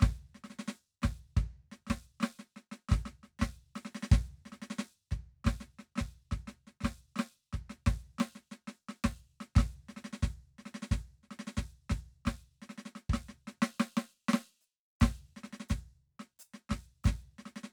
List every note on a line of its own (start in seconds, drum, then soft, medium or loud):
0.01 snare soft
0.03 kick loud
0.03 snare medium
0.36 snare soft
0.45 snare soft
0.51 snare soft
0.60 snare medium
0.69 snare medium
1.03 kick medium
1.03 snare soft
1.03 snare medium
1.37 kick medium
1.37 snare soft
1.72 snare soft
1.88 kick soft
1.88 snare soft
1.91 snare medium
2.21 snare soft
2.24 snare medium
2.40 snare soft
2.57 snare soft
2.72 snare soft
2.90 kick loud
2.90 snare medium
2.92 snare medium
3.06 snare soft
3.24 snare soft
3.40 snare soft
3.42 kick medium
3.42 snare medium
3.76 snare medium
3.76 hi-hat pedal soft
3.86 snare soft
3.96 snare medium
4.03 snare medium
4.12 kick loud
4.12 snare medium
4.46 snare soft
4.53 snare soft
4.63 snare soft
4.71 snare medium
4.79 snare medium
5.12 kick medium
5.12 snare soft
5.45 kick medium
5.45 snare soft
5.48 snare medium
5.61 snare soft
5.80 snare soft
5.97 snare soft
5.99 kick soft
5.99 snare medium
6.32 kick medium
6.32 snare soft
6.48 snare soft
6.68 snare soft
6.81 kick medium
6.81 snare soft
6.85 snare medium
7.17 snare soft
7.20 snare medium
7.54 kick medium
7.54 snare soft
7.70 snare soft
7.87 kick medium
7.87 snare medium
8.19 snare soft
8.21 snare loud
8.36 snare soft
8.52 snare soft
8.68 snare soft
8.89 snare soft
9.05 kick medium
9.05 snare medium
9.41 snare soft
9.56 kick loud
9.56 snare medium
9.59 snare medium
9.89 snare soft
9.97 snare soft
10.05 snare soft
10.14 snare medium
10.23 kick medium
10.23 snare medium
10.59 snare soft
10.66 snare soft
10.75 snare soft
10.83 snare medium
10.92 kick medium
10.92 snare medium
11.24 snare soft
11.32 snare soft
11.40 snare soft
11.48 snare medium
11.58 kick medium
11.58 snare medium
11.90 kick medium
11.90 snare medium
12.26 kick medium
12.26 snare soft
12.28 snare medium
12.63 snare soft
12.70 snare soft
12.79 snare soft
12.86 snare soft
12.96 snare soft
13.10 kick medium
13.10 snare soft
13.14 snare medium
13.29 snare soft
13.48 snare soft
13.63 snare loud
13.81 snare loud
13.98 snare medium
14.29 snare loud
14.34 snare loud
14.62 hi-hat pedal soft
15.01 kick loud
15.01 snare medium
15.01 hi-hat pedal soft
15.04 snare loud
15.37 snare soft
15.44 snare soft
15.54 snare soft
15.61 snare soft
15.70 kick medium
15.70 snare medium
15.70 hi-hat pedal medium
16.20 snare soft
16.40 hi-hat pedal medium
16.55 snare soft
16.70 kick soft
16.70 snare soft
16.70 snare medium
17.05 kick loud
17.05 snare soft
17.05 hi-hat pedal medium
17.08 snare medium
17.39 snare soft
17.46 snare soft
17.57 snare soft
17.64 snare soft